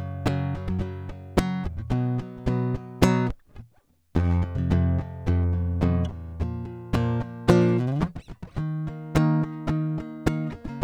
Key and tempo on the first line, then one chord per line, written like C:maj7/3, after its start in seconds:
D# minor, 108 BPM
0.00 F#:(1,5)
1.93 B:(1,5)
4.15 F:(1,5)
6.37 A#:maj
8.59 D#:(1,5)